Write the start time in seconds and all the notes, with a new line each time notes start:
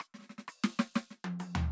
0.02 cross-stick, hi-hat pedal
0.14 snare
0.19 snare
0.22 snare
0.30 snare
0.38 snare
0.48 cross-stick, hi-hat pedal
0.64 snare
0.79 snare
0.94 snare, hi-hat pedal
1.11 snare
1.24 high tom
1.39 hi-hat pedal, high tom
1.55 floor tom